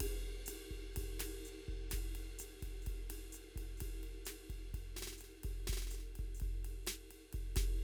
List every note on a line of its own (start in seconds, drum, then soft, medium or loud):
0.01 kick soft
0.01 ride loud
0.07 kick soft
0.47 snare soft
0.47 hi-hat pedal medium
0.47 ride medium
0.71 kick soft
0.77 kick soft
0.94 hi-hat pedal soft
0.94 ride medium
0.98 kick soft
1.04 kick soft
1.20 snare soft
1.20 ride medium
1.45 hi-hat pedal medium
1.69 kick soft
1.69 ride soft
1.74 kick soft
1.90 kick soft
1.90 snare soft
1.90 hi-hat pedal soft
1.90 ride medium
1.99 kick soft
2.16 ride soft
2.30 snare soft
2.39 snare soft
2.39 hi-hat pedal loud
2.39 ride medium
2.60 kick soft
2.60 hi-hat pedal soft
2.60 ride soft
2.68 kick soft
2.83 hi-hat pedal soft
2.87 kick soft
2.87 ride soft
2.93 kick soft
3.10 snare soft
3.10 ride medium
3.33 hi-hat pedal medium
3.33 ride soft
3.56 kick soft
3.56 ride soft
3.62 kick soft
3.78 snare soft
3.78 hi-hat pedal soft
3.78 ride medium
3.82 kick soft
3.88 kick soft
4.04 ride soft
4.15 snare soft
4.26 snare soft
4.26 hi-hat pedal medium
4.26 ride medium
4.50 kick soft
4.50 ride soft
4.56 kick soft
4.75 kick soft
4.75 ride soft
4.80 kick soft
4.97 snare soft
4.97 ride medium
5.03 snare medium
5.08 snare soft
5.13 snare soft
5.18 snare soft
5.18 hi-hat pedal soft
5.18 ride soft
5.24 snare soft
5.31 snare soft
5.37 snare soft
5.41 snare soft
5.41 ride medium
5.45 kick soft
5.51 kick soft
5.68 kick soft
5.68 snare medium
5.68 ride soft
5.73 kick soft
5.73 snare soft
5.82 snare soft
5.88 snare soft
5.88 hi-hat pedal medium
5.92 snare soft
5.92 ride soft
5.95 snare soft
5.98 snare soft
6.00 snare soft
6.06 snare soft
6.16 kick soft
6.16 ride soft
6.25 kick soft
6.35 hi-hat pedal soft
6.40 kick soft
6.40 ride soft
6.48 kick soft
6.65 ride soft
6.84 snare medium
6.84 hi-hat pedal soft
6.84 ride medium
7.11 ride soft
7.21 snare soft
7.33 kick soft
7.33 ride soft
7.40 kick soft
7.56 kick medium
7.56 snare medium
7.56 ride medium